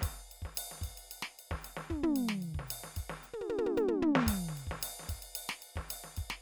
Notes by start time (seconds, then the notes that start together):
0.01 kick, snare, hi-hat pedal, ride bell
0.31 ride
0.42 kick, snare
0.55 hi-hat pedal, ride bell
0.71 snare
0.78 kick, snare
0.82 snare, ride
0.87 kick, snare
0.97 ride
1.11 hi-hat pedal, ride bell
1.22 snare
1.39 ride
1.51 kick, snare
1.61 hi-hat pedal, ride bell
1.77 snare
1.89 kick, floor tom
1.96 kick
2.03 floor tom
2.16 hi-hat pedal, ride
2.29 snare
2.42 ride
2.54 kick
2.59 snare
2.67 hi-hat pedal, ride bell
2.84 snare
2.96 kick, ride
3.09 snare
3.23 hi-hat pedal
3.33 mid tom
3.41 mid tom
3.49 mid tom
3.58 mid tom
3.66 mid tom
3.77 hi-hat pedal, mid tom
3.88 mid tom
4.02 floor tom
4.15 snare
4.27 kick, hi-hat pedal, ride
4.39 kick
4.49 snare
4.57 ride
4.67 kick
4.71 snare
4.80 hi-hat pedal, ride
5.00 snare
5.03 snare
5.06 kick, snare, ride
5.14 kick
5.22 ride
5.35 hi-hat pedal, ride
5.49 snare
5.62 ride
5.76 kick, snare
5.89 hi-hat pedal, ride bell
6.04 snare
6.17 kick, ride
6.30 snare